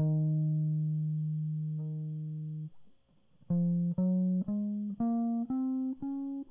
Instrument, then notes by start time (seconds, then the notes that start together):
electric guitar
0.00 D#3
3.51 F3
3.99 F#3
4.49 G#3
5.00 A#3
5.50 C4
6.03 C#4